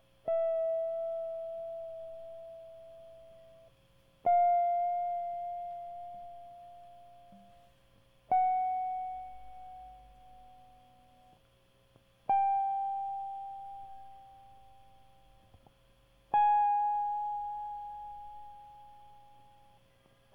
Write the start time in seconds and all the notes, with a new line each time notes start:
0.28 E5
4.27 F5
8.32 F#5
12.30 G5
16.35 G#5